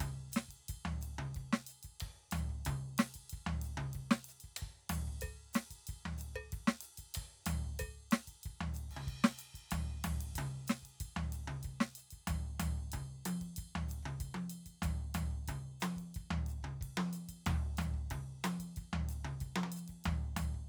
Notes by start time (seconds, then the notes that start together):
0.01 kick, mid tom, ride bell
0.33 hi-hat pedal, ride bell
0.37 snare
0.49 kick, ride
0.69 kick, ride bell
0.85 floor tom
1.01 hi-hat pedal, ride
1.19 kick, mid tom
1.35 kick, ride
1.53 snare
1.67 hi-hat pedal, ride bell
1.83 kick, ride bell
2.00 kick, ride, floor tom
2.32 floor tom, ride bell
2.36 hi-hat pedal
2.50 kick
2.66 kick, mid tom, ride bell
2.99 snare, hi-hat pedal, ride
3.15 kick, ride bell
3.30 kick, ride bell
3.47 floor tom
3.62 hi-hat pedal, ride
3.78 kick, mid tom
3.94 kick, ride
4.11 snare
4.25 hi-hat pedal, ride
4.41 kick, ride bell
4.57 ride bell, floor tom
4.62 kick
4.90 floor tom, hi-hat pedal, ride
5.08 kick
5.22 kick, ride bell, percussion
5.54 snare, hi-hat pedal, ride
5.71 kick, ride bell
5.87 kick, ride bell
6.06 floor tom
6.18 hi-hat pedal, ride
6.35 kick, percussion
6.53 kick, ride
6.68 snare
6.81 hi-hat pedal, ride
6.98 kick, ride bell
7.15 kick, ride bell, floor tom
7.46 floor tom, hi-hat pedal, ride bell
7.64 kick
7.80 kick, ride bell, percussion
8.11 snare, hi-hat pedal, ride
8.28 kick, ride bell
8.44 kick, ride bell
8.61 floor tom
8.74 hi-hat pedal, ride
8.90 kick, ride
8.97 mid tom
9.08 kick, ride
9.24 snare
9.38 hi-hat pedal, ride
9.55 kick, ride bell
9.71 kick, floor tom, ride bell
10.04 floor tom, hi-hat pedal, ride
10.19 kick, ride
10.36 kick, mid tom, ride bell
10.68 snare, hi-hat pedal, ride bell
10.83 kick, ride
11.01 kick, ride bell
11.17 floor tom
11.33 hi-hat pedal, ride
11.48 kick, mid tom
11.63 kick, ride bell
11.81 snare
11.96 hi-hat pedal, ride bell
12.11 kick, ride bell
12.28 kick, floor tom, ride bell
12.60 floor tom, hi-hat pedal, ride bell
12.78 kick
12.92 kick, mid tom, ride bell
13.26 hi-hat pedal, high tom, ride bell
13.41 kick, ride
13.57 kick, ride bell
13.76 floor tom
13.89 hi-hat pedal, ride
14.03 kick, mid tom
14.21 kick, ride bell
14.35 high tom
14.50 hi-hat pedal, ride bell
14.66 kick, ride bell
14.83 kick, floor tom, ride bell
15.15 floor tom, hi-hat pedal, ride bell
15.31 kick
15.48 kick, mid tom, ride bell
15.81 hi-hat pedal, high tom, ride bell
15.97 kick, ride
16.15 kick, ride bell
16.31 floor tom
16.47 hi-hat pedal, ride
16.63 kick, mid tom
16.81 kick, ride
16.98 high tom
17.13 hi-hat pedal, ride bell
17.29 kick, ride bell
17.47 kick, floor tom, ride
17.78 floor tom, hi-hat pedal, ride bell
17.94 kick
18.11 kick, mid tom, ride
18.44 hi-hat pedal, high tom, ride bell
18.60 kick, ride bell
18.77 kick, ride bell
18.93 floor tom
19.09 hi-hat pedal, ride
19.24 kick, mid tom
19.41 kick, ride bell
19.56 high tom
19.64 high tom
19.72 hi-hat pedal, ride bell
19.88 kick, ride
20.05 kick, floor tom, ride bell
20.37 floor tom, hi-hat pedal, ride bell
20.55 kick